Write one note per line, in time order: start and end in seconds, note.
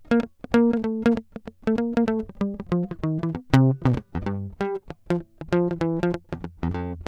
0.12 0.23 A#3
0.55 0.73 A#3
0.74 0.81 A3
0.85 1.06 A3
1.07 1.17 A#3
1.68 1.79 A3
1.79 1.97 A#3
1.98 2.08 A#3
2.09 2.30 A3
2.42 2.65 G3
2.42 2.60 G3
2.73 2.88 F3
3.04 3.23 D#3
3.24 3.40 E3
3.54 3.77 C3
4.16 4.27 G2
4.28 4.42 G2
4.61 4.83 G3
5.11 5.26 F3
5.53 5.78 F3
5.82 5.91 E3
5.91 6.03 E3
6.04 6.14 F3
6.64 6.71 E2
6.76 6.97 F2